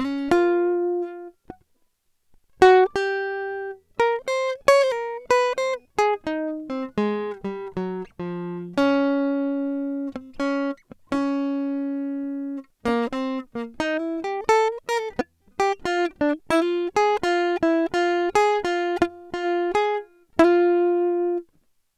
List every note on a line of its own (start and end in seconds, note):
0.00 0.40 C#4
0.33 1.34 F4
2.63 2.90 F#4
2.97 3.81 G4
4.01 4.24 A#4
4.29 4.58 C5
4.69 4.84 C#5
4.85 4.93 C5
4.94 5.21 A#4
5.32 5.56 B4
5.59 5.83 C5
6.00 6.21 G#4
6.28 6.55 D#4
6.71 6.96 C4
6.99 7.37 G#3
7.46 7.73 G3
7.78 8.08 F#3
8.21 8.77 F3
8.79 10.13 C#4
10.17 10.35 C4
10.41 10.78 C#4
11.13 12.66 C#4
12.87 13.11 A#3
13.14 13.49 C4
13.57 13.70 A#3
13.81 13.99 D#4
13.81 14.06 D#4
13.99 14.25 E4
14.26 14.46 G4
14.50 14.69 A4
14.70 14.82 A#4
14.90 14.99 A#4
15.00 15.10 A4
15.10 15.27 G4
15.61 15.78 G4
15.87 16.11 F4
16.22 16.39 D4
16.52 16.61 E4
16.61 16.93 F4
16.98 17.22 G#4
17.25 17.60 F4
17.64 17.90 E4
17.95 18.34 F4
18.37 18.70 G#4
18.66 19.00 F4
19.03 19.11 F4
19.35 19.76 F4
19.76 20.11 G#4
20.41 21.47 F4